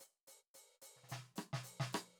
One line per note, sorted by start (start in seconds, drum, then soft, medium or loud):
0.01 hi-hat pedal medium
0.27 hi-hat pedal medium
0.54 hi-hat pedal medium
0.82 hi-hat pedal medium
0.96 snare soft
1.03 snare soft
1.09 snare medium
1.09 hi-hat pedal medium
1.36 cross-stick medium
1.36 hi-hat pedal medium
1.53 snare medium
1.64 hi-hat pedal medium
1.80 snare medium
1.93 cross-stick medium
1.93 hi-hat pedal medium